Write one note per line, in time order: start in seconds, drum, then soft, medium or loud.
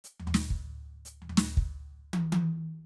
0.04 hi-hat pedal medium
0.20 floor tom medium
0.27 floor tom medium
0.34 snare medium
0.50 kick soft
1.05 hi-hat pedal medium
1.22 floor tom soft
1.29 floor tom medium
1.37 snare loud
1.57 kick medium
2.13 high tom loud
2.32 high tom loud